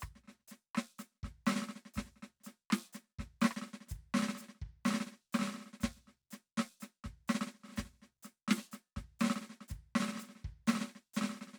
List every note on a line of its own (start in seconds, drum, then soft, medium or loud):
0.01 kick soft
0.01 cross-stick medium
0.01 hi-hat pedal medium
0.16 snare soft
0.25 snare soft
0.28 snare soft
0.40 snare soft
0.48 snare soft
0.48 hi-hat pedal medium
0.76 cross-stick medium
0.76 snare medium
0.99 snare soft
0.99 hi-hat pedal medium
1.12 snare soft
1.15 snare soft
1.24 kick soft
1.24 snare soft
1.47 snare medium
1.47 hi-hat pedal medium
1.50 snare medium
1.53 snare medium
1.56 snare medium
1.59 snare medium
1.63 snare medium
1.68 snare soft
1.69 snare soft
1.76 snare soft
1.86 snare soft
1.95 kick soft
1.95 snare soft
1.95 hi-hat pedal medium
1.98 snare medium
2.07 snare soft
2.17 snare soft
2.23 snare soft
2.41 snare soft
2.41 hi-hat pedal medium
2.47 snare soft
2.71 cross-stick medium
2.71 snare medium
2.94 snare soft
2.94 hi-hat pedal medium
3.04 snare soft
3.10 snare soft
3.19 kick soft
3.19 snare soft
3.42 snare medium
3.42 hi-hat pedal medium
3.45 cross-stick medium
3.45 snare medium
3.52 cross-stick medium
3.57 snare medium
3.62 snare medium
3.67 snare soft
3.74 snare soft
3.81 snare soft
3.87 snare soft
3.87 hi-hat pedal medium
3.92 kick soft
4.15 snare medium
4.17 snare medium
4.20 snare medium
4.23 snare medium
4.26 snare medium
4.29 snare medium
4.34 snare soft
4.36 snare soft
4.36 hi-hat pedal medium
4.41 snare soft
4.43 snare soft
4.49 snare soft
4.56 snare soft
4.61 kick soft
4.61 snare soft
4.86 snare medium
4.86 hi-hat pedal medium
4.88 snare medium
4.91 snare medium
4.95 snare medium
4.97 snare medium
5.01 snare medium
5.07 snare soft
5.13 snare soft
5.33 snare medium
5.33 hi-hat pedal medium
5.40 snare medium
5.42 snare medium
5.45 snare medium
5.48 snare medium
5.52 snare soft
5.55 snare soft
5.58 snare soft
5.61 snare soft
5.67 snare soft
5.74 snare soft
5.81 kick soft
5.81 snare soft
5.81 hi-hat pedal medium
5.84 snare medium
5.97 snare soft
6.02 snare soft
6.06 snare soft
6.08 snare soft
6.31 snare soft
6.31 hi-hat pedal medium
6.58 snare medium
6.60 snare medium
6.81 snare soft
6.81 hi-hat pedal medium
7.05 kick soft
7.05 snare soft
7.29 snare medium
7.29 hi-hat pedal medium
7.35 snare medium
7.42 snare medium
7.47 snare soft
7.55 snare soft
7.60 snare soft
7.64 snare soft
7.69 snare soft
7.73 snare soft
7.76 snare soft
7.76 hi-hat pedal medium
7.78 kick soft
7.78 snare medium
7.86 snare soft
7.91 snare soft
7.94 snare soft
7.99 snare soft
8.03 snare soft
8.23 snare soft
8.23 hi-hat pedal medium
8.49 snare medium
8.52 snare loud
8.58 snare soft
8.72 snare soft
8.72 hi-hat pedal medium
8.97 kick soft
8.97 snare soft
9.20 snare medium
9.20 hi-hat pedal medium
9.24 snare medium
9.27 snare medium
9.31 snare medium
9.37 snare medium
9.42 snare soft
9.43 snare soft
9.50 snare soft
9.61 snare soft
9.69 kick soft
9.69 snare soft
9.69 hi-hat pedal medium
9.96 snare medium
10.01 snare medium
10.03 snare medium
10.06 snare medium
10.09 snare medium
10.13 snare soft
10.16 snare soft
10.18 snare soft
10.18 hi-hat pedal medium
10.23 snare soft
10.28 snare soft
10.30 snare soft
10.36 snare soft
10.38 snare soft
10.41 kick soft
10.41 snare soft
10.46 snare soft
10.68 snare medium
10.68 hi-hat pedal medium
10.74 snare medium
10.76 snare medium
10.79 snare soft
10.82 snare medium
10.84 snare soft
10.88 snare soft
10.96 snare soft
11.14 snare medium
11.14 hi-hat pedal medium
11.22 snare medium
11.24 snare medium
11.27 snare soft
11.30 snare medium
11.33 snare soft
11.36 snare soft
11.42 snare soft
11.47 snare soft
11.54 snare soft